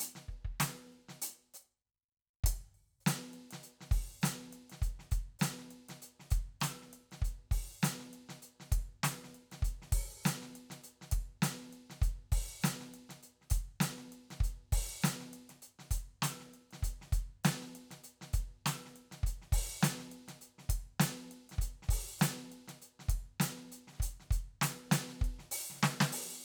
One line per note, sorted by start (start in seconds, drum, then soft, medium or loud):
0.01 closed hi-hat loud
0.16 snare soft
0.29 kick soft
0.29 closed hi-hat soft
0.46 kick soft
0.61 closed hi-hat loud
0.61 snare loud
0.93 closed hi-hat soft
1.09 snare soft
1.23 closed hi-hat loud
1.55 hi-hat pedal medium
2.45 kick medium
2.45 closed hi-hat loud
2.75 open hi-hat soft
3.01 hi-hat pedal soft
3.07 closed hi-hat loud
3.07 snare loud
3.34 closed hi-hat soft
3.52 snare medium
3.52 closed hi-hat soft
3.64 closed hi-hat medium
3.81 snare soft
3.92 open hi-hat medium
3.92 kick medium
4.22 closed hi-hat loud
4.22 snare loud
4.22 hi-hat pedal medium
4.42 snare soft
4.46 snare soft
4.54 closed hi-hat soft
4.71 snare soft
4.71 closed hi-hat soft
4.83 closed hi-hat medium
4.83 kick medium
5.00 snare soft
5.12 closed hi-hat medium
5.12 kick medium
5.40 closed hi-hat loud
5.40 snare loud
5.40 hi-hat pedal medium
5.59 snare soft
5.71 closed hi-hat soft
5.90 snare soft
5.90 closed hi-hat soft
6.03 closed hi-hat medium
6.20 snare soft
6.31 closed hi-hat medium
6.31 kick medium
6.62 closed hi-hat loud
6.62 snare loud
6.62 hi-hat pedal medium
6.83 snare soft
6.94 closed hi-hat soft
7.12 snare soft
7.12 closed hi-hat soft
7.23 closed hi-hat medium
7.23 kick medium
7.52 open hi-hat medium
7.52 kick medium
7.83 closed hi-hat loud
7.83 snare loud
7.83 hi-hat pedal medium
8.00 snare soft
8.14 closed hi-hat soft
8.30 snare medium
8.30 closed hi-hat soft
8.43 closed hi-hat soft
8.61 snare soft
8.73 kick medium
8.73 closed hi-hat medium
9.04 closed hi-hat loud
9.04 snare loud
9.24 snare soft
9.35 closed hi-hat soft
9.52 snare soft
9.52 closed hi-hat soft
9.63 closed hi-hat medium
9.63 kick medium
9.83 snare soft
9.93 kick medium
9.93 open hi-hat medium
10.25 closed hi-hat loud
10.25 snare loud
10.25 hi-hat pedal medium
10.43 snare soft
10.56 closed hi-hat soft
10.71 snare medium
10.71 closed hi-hat soft
10.85 closed hi-hat medium
11.02 snare soft
11.12 kick medium
11.12 closed hi-hat medium
11.43 closed hi-hat loud
11.43 snare loud
11.63 snare soft
11.73 closed hi-hat soft
11.91 snare soft
11.91 closed hi-hat soft
12.03 closed hi-hat medium
12.03 kick medium
12.33 open hi-hat medium
12.33 kick medium
12.63 closed hi-hat loud
12.63 snare loud
12.63 hi-hat pedal medium
12.81 snare soft
12.95 closed hi-hat soft
13.10 snare soft
13.10 closed hi-hat soft
13.24 closed hi-hat soft
13.42 snare soft
13.51 closed hi-hat loud
13.51 kick medium
13.81 closed hi-hat loud
13.81 snare loud
13.98 snare soft
14.13 closed hi-hat soft
14.31 snare soft
14.31 closed hi-hat soft
14.41 closed hi-hat medium
14.41 kick medium
14.73 open hi-hat loud
14.73 kick medium
15.03 closed hi-hat loud
15.03 snare loud
15.03 hi-hat pedal medium
15.21 snare soft
15.34 closed hi-hat soft
15.50 snare soft
15.50 closed hi-hat soft
15.63 closed hi-hat medium
15.80 snare soft
15.92 closed hi-hat medium
15.92 kick medium
16.23 closed hi-hat loud
16.23 snare loud
16.41 snare soft
16.55 closed hi-hat soft
16.72 snare soft
16.72 closed hi-hat soft
16.83 closed hi-hat medium
16.83 kick soft
17.02 snare soft
17.13 open hi-hat medium
17.13 kick medium
17.45 closed hi-hat loud
17.45 snare loud
17.45 hi-hat pedal medium
17.62 snare soft
17.76 closed hi-hat soft
17.91 snare soft
17.91 closed hi-hat soft
18.05 closed hi-hat medium
18.22 snare soft
18.34 closed hi-hat medium
18.34 kick medium
18.67 closed hi-hat loud
18.67 snare loud
18.86 snare soft
18.97 closed hi-hat soft
19.12 snare soft
19.12 closed hi-hat soft
19.24 closed hi-hat medium
19.24 kick medium
19.43 snare soft
19.53 open hi-hat loud
19.53 kick medium
19.82 closed hi-hat loud
19.82 snare loud
19.82 hi-hat pedal medium
19.99 snare soft
20.12 closed hi-hat soft
20.29 snare soft
20.29 closed hi-hat soft
20.42 closed hi-hat medium
20.59 snare soft
20.70 kick medium
20.70 closed hi-hat medium
21.00 closed hi-hat loud
21.00 snare loud
21.18 snare soft
21.32 closed hi-hat soft
21.50 snare soft
21.50 closed hi-hat soft
21.59 closed hi-hat medium
21.59 kick medium
21.83 snare soft
21.90 open hi-hat loud
21.90 kick medium
22.20 closed hi-hat loud
22.20 snare loud
22.20 hi-hat pedal medium
22.37 snare soft
22.53 closed hi-hat soft
22.68 snare soft
22.68 closed hi-hat soft
22.83 closed hi-hat medium
23.00 snare soft
23.09 kick medium
23.09 closed hi-hat medium
23.41 closed hi-hat loud
23.41 snare loud
23.57 snare soft
23.73 closed hi-hat medium
23.88 snare soft
23.94 snare soft
23.98 kick soft
23.98 snare soft
24.02 closed hi-hat medium
24.02 snare soft
24.21 snare soft
24.32 closed hi-hat medium
24.32 kick medium
24.62 closed hi-hat loud
24.62 snare loud
24.92 closed hi-hat loud
24.92 snare loud
25.09 snare soft
25.22 kick medium
25.22 closed hi-hat soft
25.40 snare soft
25.52 open hi-hat loud
25.71 snare soft
25.76 snare soft
25.76 hi-hat pedal soft
25.80 snare soft
25.84 snare loud
26.01 snare loud
26.13 open hi-hat loud